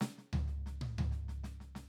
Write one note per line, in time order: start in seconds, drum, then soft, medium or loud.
0.01 snare medium
0.01 hi-hat pedal soft
0.19 snare soft
0.34 floor tom loud
0.48 snare soft
0.67 snare soft
0.82 high tom medium
0.99 floor tom medium
1.12 snare soft
1.29 snare soft
1.44 snare soft
1.61 snare soft
1.76 snare soft